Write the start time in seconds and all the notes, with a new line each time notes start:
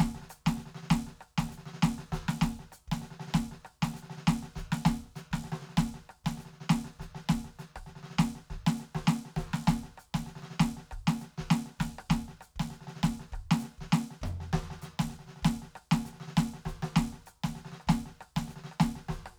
0.01 kick, snare
0.11 kick
0.16 snare
0.23 snare
0.31 cross-stick, hi-hat pedal
0.47 kick, snare
0.59 snare
0.67 snare
0.76 snare
0.84 snare
0.91 kick, snare, hi-hat pedal
1.08 snare
1.22 cross-stick
1.39 kick, snare
1.50 snare, hi-hat pedal
1.59 snare
1.67 snare
1.75 snare
1.84 kick, snare
2.00 snare
2.13 kick, snare, hi-hat pedal
2.30 snare
2.43 kick, snare
2.49 kick
2.61 snare
2.73 cross-stick, hi-hat pedal
2.89 kick, snare
3.03 snare
3.12 snare
3.21 snare
3.29 snare
3.35 kick, snare, hi-hat pedal
3.53 snare
3.66 cross-stick
3.83 kick, snare
3.95 snare, hi-hat pedal
4.04 snare
4.11 snare
4.19 snare
4.28 kick, snare
4.44 snare
4.57 kick, snare, hi-hat pedal
4.73 snare
4.87 kick, snare
4.93 kick
4.96 kick
5.04 snare
5.17 snare, hi-hat pedal
5.33 kick, snare
5.45 snare
5.53 snare
5.61 snare
5.63 snare
5.70 snare
5.79 kick, snare, hi-hat pedal
5.84 kick
5.96 snare
6.11 cross-stick
6.26 kick, snare
6.39 snare, hi-hat pedal
6.47 snare
6.54 snare
6.62 snare
6.71 kick, snare
6.86 snare
7.00 kick, snare, hi-hat pedal
7.16 snare
7.30 kick, snare
7.46 snare
7.60 snare, hi-hat pedal
7.77 kick, cross-stick
7.88 snare
7.97 snare
8.05 snare
8.11 snare
8.19 kick, snare, hi-hat pedal
8.37 snare
8.52 kick, snare
8.60 kick
8.68 snare
8.78 snare, hi-hat pedal
8.96 kick, snare
9.09 snare
9.27 snare
9.38 kick, snare, hi-hat pedal
9.55 snare
9.69 kick, snare
9.75 kick
9.85 snare
9.99 cross-stick, hi-hat pedal
10.15 kick, snare
10.28 snare
10.37 snare
10.44 snare
10.52 snare
10.61 kick, snare, hi-hat pedal
10.78 snare
10.93 kick, cross-stick
11.02 kick
11.09 snare
11.21 snare, hi-hat pedal
11.39 kick, snare
11.52 snare
11.67 snare
11.81 kick, snare, hi-hat pedal
12.00 cross-stick
12.11 kick, snare
12.17 kick
12.20 kick
12.30 snare
12.42 cross-stick, hi-hat pedal
12.57 kick, snare
12.72 snare
12.82 snare
12.89 snare
12.97 snare
13.04 kick, snare, hi-hat pedal
13.10 kick
13.21 snare
13.34 kick, cross-stick
13.40 kick
13.43 kick
13.52 snare
13.61 snare, hi-hat pedal
13.79 kick, snare
13.94 snare
14.12 snare
14.23 kick, floor tom, hi-hat pedal
14.42 snare
14.54 kick, snare
14.61 kick
14.72 snare
14.83 snare, hi-hat pedal
15.01 kick, snare
15.11 snare
15.20 snare
15.28 snare
15.29 snare
15.38 snare
15.44 kick, snare, hi-hat pedal
15.63 snare
15.77 cross-stick
15.93 kick, snare
16.07 snare, hi-hat pedal
16.14 snare
16.22 snare
16.29 snare
16.38 kick, snare
16.55 snare
16.67 kick, snare, hi-hat pedal
16.84 snare
16.97 kick, snare
17.04 kick
17.14 snare
17.28 cross-stick, hi-hat pedal
17.45 kick, snare
17.57 snare
17.66 snare
17.73 snare
17.81 cross-stick
17.89 kick, snare, hi-hat pedal
17.95 kick
18.07 snare
18.22 cross-stick
18.37 kick, snare
18.49 snare, hi-hat pedal
18.57 snare
18.65 snare
18.73 cross-stick
18.81 kick, snare
18.97 snare
19.10 kick, snare, hi-hat pedal
19.27 cross-stick